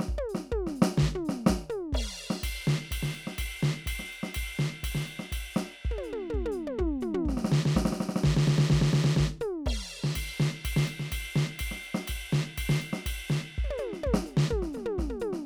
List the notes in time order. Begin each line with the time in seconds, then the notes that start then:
0.01 snare
0.09 kick
0.15 kick, high tom
0.30 hi-hat pedal
0.36 snare
0.52 kick, mid tom
0.59 kick
0.68 snare
0.77 hi-hat pedal
0.83 snare
0.99 snare
1.03 kick
1.09 kick
1.16 floor tom
1.26 snare, hi-hat pedal
1.47 kick, snare
1.56 kick
1.70 hi-hat pedal, mid tom
1.94 kick, crash
2.06 kick
2.16 hi-hat pedal
2.31 snare
2.44 kick, ride bell
2.50 kick
2.64 hi-hat pedal
2.68 snare
2.92 kick, ride bell
2.98 kick
3.04 snare
3.12 hi-hat pedal, ride
3.28 snare
3.39 kick, ride bell
3.46 kick
3.59 hi-hat pedal
3.64 snare
3.81 hi-hat pedal
3.87 kick, ride bell
3.94 kick
4.00 snare
4.07 hi-hat pedal
4.13 ride
4.24 snare
4.35 kick, ride bell
4.44 kick
4.56 hi-hat pedal
4.60 snare
4.84 kick, ride bell
4.91 kick
4.96 snare
5.03 hi-hat pedal
5.08 ride
5.20 snare
5.33 kick, ride bell
5.53 snare, hi-hat pedal
5.86 kick
5.92 kick, mid tom
5.99 high tom
6.05 hi-hat pedal
6.13 mid tom
6.31 mid tom
6.35 kick
6.41 kick
6.46 mid tom
6.53 hi-hat pedal
6.68 high tom
6.79 kick, floor tom
6.88 kick
7.02 floor tom, hi-hat pedal
7.15 floor tom
7.26 kick, snare
7.33 kick
7.38 snare
7.45 snare, hi-hat pedal
7.53 snare
7.66 snare
7.76 kick, snare
7.83 kick, snare
7.93 snare, hi-hat pedal
8.01 snare
8.10 snare
8.17 snare
8.25 kick, snare
8.33 kick
8.38 snare
8.47 snare, hi-hat pedal
8.59 snare
8.71 kick, snare
8.83 snare
8.94 snare, hi-hat pedal
9.05 snare
9.17 kick, snare
9.27 kick
9.42 hi-hat pedal, mid tom
9.67 kick, crash
9.79 kick
9.89 hi-hat pedal
10.05 snare
10.16 kick, ride bell
10.23 kick
10.36 hi-hat pedal
10.41 snare
10.66 kick, ride bell
10.72 kick
10.77 snare
10.84 hi-hat pedal
10.88 ride
11.01 snare
11.13 kick, ride bell
11.19 kick
11.32 hi-hat pedal
11.37 snare
11.60 kick, ride bell
11.72 snare
11.82 hi-hat pedal, ride
11.96 snare
12.08 kick, ride bell
12.16 kick
12.30 snare, hi-hat pedal
12.59 kick, ride bell
12.65 kick
12.70 snare
12.78 hi-hat pedal
12.82 ride
12.94 snare
13.07 kick, ride bell
13.13 kick
13.29 snare, hi-hat pedal
13.59 kick
13.65 kick, high tom
13.71 high tom
13.79 hi-hat pedal, high tom
13.94 snare
14.04 kick, high tom
14.14 kick, snare
14.26 hi-hat pedal, mid tom
14.38 snare
14.51 kick, mid tom
14.60 kick, snare
14.74 snare, hi-hat pedal, mid tom
14.86 mid tom
14.99 kick, snare
15.05 kick
15.10 mid tom
15.21 hi-hat pedal, mid tom
15.34 snare